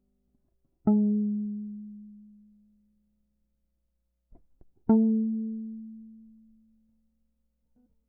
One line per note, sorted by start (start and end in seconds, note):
0.88 2.44 G#3
4.89 6.47 A3
4.99 5.24 A3